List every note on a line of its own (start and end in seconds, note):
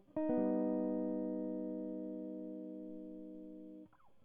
0.17 3.88 D#4
0.30 3.85 B3
0.39 3.88 G3